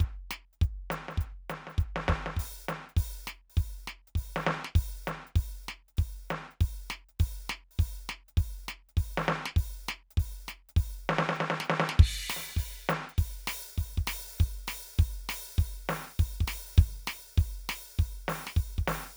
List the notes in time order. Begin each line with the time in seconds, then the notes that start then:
0.01 closed hi-hat, kick
0.31 closed hi-hat, snare
0.54 closed hi-hat
0.62 closed hi-hat, kick
0.91 closed hi-hat, snare
1.09 snare, closed hi-hat
1.18 closed hi-hat, kick
1.50 closed hi-hat, snare
1.68 snare, closed hi-hat
1.79 closed hi-hat, kick
1.97 snare
2.09 kick, snare
2.27 snare
2.37 open hi-hat, kick
2.65 hi-hat pedal
2.69 snare, closed hi-hat
2.90 closed hi-hat
2.97 open hi-hat, kick
3.25 closed hi-hat, snare, hi-hat pedal
3.50 open hi-hat
3.58 open hi-hat, kick
3.86 closed hi-hat, snare, hi-hat pedal
4.08 closed hi-hat
4.16 open hi-hat, kick
4.37 snare
4.44 snare, hi-hat pedal
4.65 snare
4.76 open hi-hat, kick
5.05 closed hi-hat, snare, hi-hat pedal
5.28 closed hi-hat
5.36 open hi-hat, kick
5.66 closed hi-hat, snare, hi-hat pedal
5.89 closed hi-hat
5.98 open hi-hat, kick
6.28 closed hi-hat, snare, hi-hat pedal
6.52 closed hi-hat
6.61 open hi-hat, kick
6.89 closed hi-hat, snare, hi-hat pedal
7.09 closed hi-hat
7.20 open hi-hat, kick
7.47 closed hi-hat, snare, hi-hat pedal
7.72 open hi-hat
7.80 open hi-hat, kick
8.07 closed hi-hat, snare, hi-hat pedal
8.29 closed hi-hat
8.38 open hi-hat, kick
8.66 closed hi-hat, snare, hi-hat pedal
8.90 closed hi-hat
8.98 open hi-hat, kick
9.18 snare
9.26 snare, hi-hat pedal
9.46 snare
9.57 open hi-hat, kick
9.87 snare, closed hi-hat, hi-hat pedal
10.11 closed hi-hat
10.18 open hi-hat, kick
10.47 closed hi-hat, snare, hi-hat pedal
10.70 closed hi-hat
10.77 open hi-hat, kick
11.07 snare, hi-hat pedal
11.19 snare
11.30 snare
11.35 hi-hat pedal
11.41 snare
11.51 snare
11.61 snare, hi-hat pedal
11.70 snare
11.90 snare
12.00 kick, crash
12.30 open hi-hat, snare
12.37 snare
12.57 open hi-hat, kick
12.86 snare, hi-hat pedal
12.90 closed hi-hat
13.10 closed hi-hat
13.19 open hi-hat, kick
13.48 open hi-hat, snare
13.70 open hi-hat
13.79 open hi-hat, kick
13.98 kick
14.08 open hi-hat, snare
14.29 open hi-hat
14.39 open hi-hat, kick
14.68 open hi-hat, snare
14.88 open hi-hat
14.99 open hi-hat, kick
15.30 open hi-hat, snare
15.51 open hi-hat
15.59 open hi-hat, kick
15.89 open hi-hat, snare
16.09 open hi-hat
16.20 open hi-hat, kick
16.41 kick
16.48 open hi-hat, snare
16.67 open hi-hat
16.77 open hi-hat, kick
17.08 open hi-hat, snare
17.29 open hi-hat
17.38 open hi-hat, kick
17.70 open hi-hat, snare
17.91 open hi-hat
18.00 open hi-hat, kick
18.29 open hi-hat, snare
18.47 open hi-hat, snare
18.57 open hi-hat, kick
18.79 kick
18.88 open hi-hat, snare
19.11 open hi-hat